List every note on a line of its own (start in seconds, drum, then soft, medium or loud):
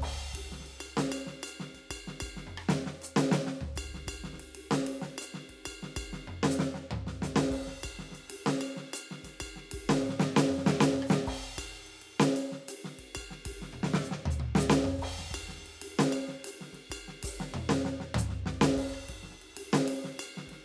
0.01 kick soft
0.01 hi-hat pedal soft
0.01 crash loud
0.21 cross-stick soft
0.34 kick soft
0.34 ride loud
0.52 snare soft
0.60 snare soft
0.66 snare soft
0.66 ride bell medium
0.81 ride bell loud
0.97 snare medium
0.97 hi-hat pedal medium
1.12 ride bell loud
1.27 snare soft
1.43 hi-hat pedal medium
1.43 ride bell loud
1.60 snare medium
1.74 kick soft
1.74 snare soft
1.74 ride bell soft
1.91 kick soft
1.91 hi-hat pedal soft
1.91 ride bell loud
2.08 snare medium
2.21 kick soft
2.21 ride bell loud
2.28 kick soft
2.37 snare soft
2.47 mid tom medium
2.58 cross-stick medium
2.69 snare loud
2.69 hi-hat pedal soft
2.86 snare medium
3.02 hi-hat pedal loud
3.02 ride bell medium
3.17 snare loud
3.32 snare loud
3.47 snare medium
3.58 snare soft
3.58 floor tom medium
3.76 kick soft
3.76 hi-hat pedal medium
3.76 ride bell loud
3.95 snare soft
4.08 kick soft
4.08 ride bell loud
4.24 snare medium
4.33 snare soft
4.40 ride medium
4.55 ride medium
4.71 snare loud
4.71 hi-hat pedal medium
4.87 ride loud
5.02 snare medium
5.18 hi-hat pedal loud
5.18 ride bell loud
5.34 snare medium
5.49 kick soft
5.49 snare soft
5.49 ride medium
5.66 kick soft
5.66 ride bell loud
5.83 snare medium
5.97 kick soft
5.97 ride bell loud
6.03 kick soft
6.13 snare medium
6.28 mid tom medium
6.43 snare loud
6.51 hi-hat pedal loud
6.59 snare loud
6.75 snare medium
6.91 floor tom medium
7.07 snare medium
7.22 snare medium
7.22 hi-hat pedal medium
7.36 snare loud
7.51 kick soft
7.51 crash medium
7.57 kick soft
7.67 snare soft
7.84 kick soft
7.84 ride bell loud
7.99 snare soft
8.12 snare soft
8.12 ride bell medium
8.30 ride loud
8.46 snare loud
8.61 ride bell loud
8.77 snare soft
8.94 hi-hat pedal loud
8.94 ride bell loud
9.11 snare soft
9.24 kick soft
9.24 snare soft
9.24 ride bell medium
9.41 kick soft
9.41 ride bell loud
9.56 snare soft
9.72 kick soft
9.72 ride loud
9.79 kick soft
9.89 snare loud
10.00 high tom medium
10.06 snare medium
10.06 hi-hat pedal soft
10.20 snare loud
10.37 snare loud
10.49 hi-hat pedal soft
10.49 mid tom medium
10.58 snare medium
10.67 snare loud
10.75 hi-hat pedal soft
10.81 snare loud
10.93 mid tom medium
11.03 cross-stick medium
11.07 snare loud
11.07 hi-hat pedal medium
11.25 kick soft
11.25 hi-hat pedal soft
11.25 crash loud
11.40 kick soft
11.58 kick soft
11.58 ride bell loud
11.87 ride medium
12.02 ride medium
12.20 snare loud
12.36 ride bell medium
12.52 snare soft
12.68 hi-hat pedal loud
12.68 ride loud
12.85 snare medium
12.99 kick soft
12.99 ride medium
13.15 kick soft
13.15 hi-hat pedal soft
13.15 ride bell loud
13.31 snare soft
13.46 kick soft
13.46 ride loud
13.52 kick soft
13.62 snare soft
13.73 mid tom medium
13.83 snare loud
13.94 snare loud
14.04 hi-hat pedal medium
14.11 snare medium
14.26 floor tom loud
14.31 hi-hat pedal medium
14.40 high tom loud
14.55 snare loud
14.60 hi-hat pedal loud
14.70 snare loud
14.79 snare soft
14.85 mid tom loud
14.90 cross-stick soft
14.98 kick soft
14.98 hi-hat pedal soft
15.02 crash loud
15.19 snare soft
15.31 kick soft
15.31 ride bell loud
15.49 snare soft
15.58 snare soft
15.66 ride medium
15.82 ride loud
15.99 snare loud
15.99 hi-hat pedal medium
16.13 ride bell loud
16.28 snare soft
16.45 hi-hat pedal loud
16.45 ride loud
16.61 snare soft
16.73 kick soft
16.73 snare soft
16.73 ride medium
16.90 kick soft
16.90 hi-hat pedal soft
16.90 ride bell loud
17.08 snare soft
17.23 kick soft
17.23 hi-hat pedal loud
17.23 ride loud
17.40 snare medium
17.54 mid tom loud
17.69 snare loud
17.85 snare medium
18.00 snare medium
18.15 kick soft
18.15 hi-hat pedal loud
18.15 floor tom loud
18.29 snare soft
18.46 snare medium
18.62 snare loud
18.77 kick soft
18.77 crash medium
18.83 kick soft
18.94 cross-stick soft
19.09 kick soft
19.09 snare soft
19.09 ride medium
19.09 floor tom soft
19.23 snare soft
19.31 snare soft
19.38 snare soft
19.42 ride medium
19.57 ride loud
19.73 snare loud
19.73 hi-hat pedal medium
19.88 ride loud
20.04 snare soft
20.20 hi-hat pedal medium
20.20 ride bell loud
20.37 snare medium
20.47 kick soft
20.47 ride medium
20.52 snare soft